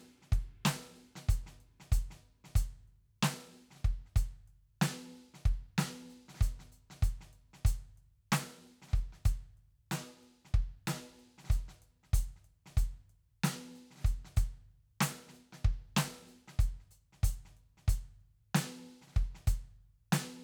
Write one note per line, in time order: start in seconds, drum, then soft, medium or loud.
0.01 closed hi-hat soft
0.22 snare soft
0.32 kick medium
0.32 closed hi-hat soft
0.65 closed hi-hat medium
0.65 snare loud
0.97 closed hi-hat soft
1.16 snare medium
1.29 closed hi-hat medium
1.29 kick medium
1.47 snare soft
1.61 closed hi-hat soft
1.80 snare soft
1.92 closed hi-hat medium
1.92 kick medium
2.11 snare soft
2.24 closed hi-hat soft
2.44 snare soft
2.56 closed hi-hat medium
2.56 kick medium
2.88 closed hi-hat soft
3.23 closed hi-hat medium
3.23 snare loud
3.55 closed hi-hat soft
3.71 snare soft
3.74 snare soft
3.85 kick medium
3.85 closed hi-hat soft
4.06 snare soft
4.16 closed hi-hat medium
4.16 kick medium
4.48 closed hi-hat soft
4.82 closed hi-hat medium
4.82 snare loud
5.34 snare soft
5.46 kick medium
5.46 closed hi-hat soft
5.78 closed hi-hat medium
5.78 snare loud
6.10 closed hi-hat soft
6.29 snare soft
6.35 snare soft
6.38 kick medium
6.38 snare soft
6.42 closed hi-hat medium
6.42 snare soft
6.60 snare soft
6.72 closed hi-hat soft
6.90 snare soft
7.03 closed hi-hat medium
7.03 kick medium
7.21 snare soft
7.33 closed hi-hat soft
7.54 snare soft
7.65 closed hi-hat medium
7.65 kick medium
7.98 closed hi-hat soft
8.32 closed hi-hat medium
8.32 snare loud
8.82 snare soft
8.88 snare soft
8.91 closed hi-hat soft
8.91 kick medium
8.91 snare soft
9.13 snare soft
9.26 closed hi-hat medium
9.26 kick medium
9.57 closed hi-hat soft
9.91 closed hi-hat medium
9.91 snare loud
10.23 closed hi-hat soft
10.45 snare soft
10.54 kick medium
10.54 closed hi-hat soft
10.88 closed hi-hat medium
10.88 snare loud
11.19 closed hi-hat soft
11.38 snare soft
11.45 snare soft
11.48 snare soft
11.50 closed hi-hat medium
11.50 kick medium
11.50 snare soft
11.69 snare soft
11.82 closed hi-hat soft
12.03 snare soft
12.14 closed hi-hat medium
12.14 kick medium
12.36 snare soft
12.45 closed hi-hat soft
12.66 snare soft
12.77 closed hi-hat medium
12.77 kick medium
13.10 closed hi-hat soft
13.44 closed hi-hat medium
13.44 snare loud
13.75 closed hi-hat soft
13.91 snare soft
13.95 snare soft
13.98 snare soft
14.00 snare soft
14.05 closed hi-hat soft
14.05 kick medium
14.25 snare soft
14.37 closed hi-hat medium
14.37 kick medium
15.01 closed hi-hat loud
15.01 snare loud
15.29 snare soft
15.34 closed hi-hat soft
15.53 snare soft
15.65 kick medium
15.97 closed hi-hat medium
15.97 snare loud
16.23 snare soft
16.26 closed hi-hat soft
16.26 snare soft
16.48 snare soft
16.59 closed hi-hat medium
16.59 kick medium
16.80 snare soft
16.91 closed hi-hat soft
17.13 snare soft
17.24 closed hi-hat medium
17.24 kick medium
17.45 snare soft
17.57 closed hi-hat soft
17.78 snare soft
17.88 closed hi-hat medium
17.88 kick medium
18.21 closed hi-hat soft
18.55 closed hi-hat loud
18.55 snare loud
18.86 closed hi-hat soft
19.02 snare soft
19.08 snare soft
19.12 snare soft
19.15 kick medium
19.15 snare soft
19.15 closed hi-hat soft
19.18 snare soft
19.35 snare soft
19.47 closed hi-hat medium
19.47 kick medium
20.13 closed hi-hat loud
20.13 snare loud